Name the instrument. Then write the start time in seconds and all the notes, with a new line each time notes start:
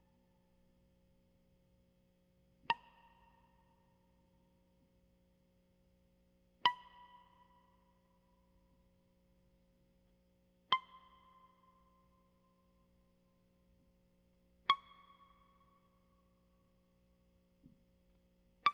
electric guitar
2.70 A#5
6.66 B5
10.73 C6
14.70 C#6
18.67 D6